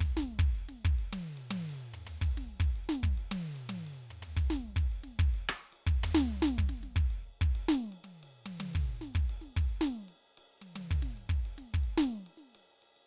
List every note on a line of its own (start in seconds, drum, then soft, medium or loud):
0.01 kick medium
0.01 hi-hat pedal medium
0.01 ride medium
0.17 snare medium
0.39 kick medium
0.39 ride medium
0.55 hi-hat pedal medium
0.55 ride soft
0.69 snare soft
0.85 kick medium
0.99 ride medium
1.12 hi-hat pedal medium
1.12 high tom medium
1.37 ride medium
1.51 high tom loud
1.66 hi-hat pedal medium
1.66 ride medium
1.94 floor tom medium
2.07 floor tom medium
2.22 kick medium
2.22 hi-hat pedal medium
2.22 ride medium
2.37 snare soft
2.60 kick medium
2.60 ride medium
2.76 hi-hat pedal medium
2.76 ride soft
2.89 snare medium
3.03 kick medium
3.18 ride medium
3.29 hi-hat pedal medium
3.29 high tom loud
3.56 ride medium
3.69 high tom medium
3.84 hi-hat pedal medium
3.84 ride medium
4.11 floor tom soft
4.22 floor tom medium
4.37 kick medium
4.37 hi-hat pedal medium
4.37 ride medium
4.50 snare medium
4.76 kick medium
4.76 ride medium
4.92 hi-hat pedal medium
4.92 ride medium
5.04 snare soft
5.19 kick medium
5.34 ride medium
5.47 cross-stick loud
5.47 hi-hat pedal medium
5.73 ride medium
5.87 kick medium
6.03 floor tom loud
6.03 hi-hat pedal medium
6.15 snare loud
6.28 hi-hat pedal soft
6.42 snare loud
6.58 kick medium
6.58 hi-hat pedal medium
6.58 ride medium
6.69 snare soft
6.83 snare soft
6.96 kick medium
6.96 ride medium
7.10 hi-hat pedal medium
7.10 ride medium
7.41 kick medium
7.55 ride medium
7.66 snare loud
7.66 hi-hat pedal medium
7.92 ride medium
8.04 high tom soft
8.19 hi-hat pedal medium
8.19 ride medium
8.46 high tom medium
8.59 high tom medium
8.59 ride soft
8.74 kick medium
8.74 hi-hat pedal medium
8.74 ride medium
9.01 snare soft
9.01 ride soft
9.14 kick medium
9.14 ride soft
9.30 hi-hat pedal medium
9.30 ride medium
9.42 snare soft
9.57 kick medium
9.69 ride soft
9.81 snare loud
9.81 hi-hat pedal medium
9.81 ride medium
10.09 ride medium
10.35 hi-hat pedal medium
10.35 ride medium
10.62 high tom soft
10.62 ride soft
10.76 high tom medium
10.76 ride soft
10.91 kick medium
10.91 hi-hat pedal medium
10.91 ride medium
11.02 snare soft
11.17 ride soft
11.29 kick medium
11.29 ride soft
11.44 hi-hat pedal medium
11.44 ride medium
11.58 snare soft
11.68 hi-hat pedal soft
11.74 kick medium
11.84 ride soft
11.98 snare loud
11.98 hi-hat pedal medium
11.98 ride medium
12.26 ride medium
12.38 snare soft
12.53 hi-hat pedal medium
12.53 ride medium
12.82 ride soft
12.97 ride soft